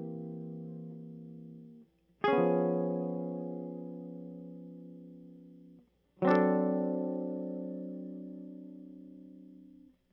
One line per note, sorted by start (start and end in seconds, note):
2.24 4.61 G#4
2.28 5.82 C#4
2.33 5.86 B3
2.39 5.83 F3
6.23 9.91 F#3
6.23 9.98 C4
6.28 9.91 D4
6.28 8.54 A4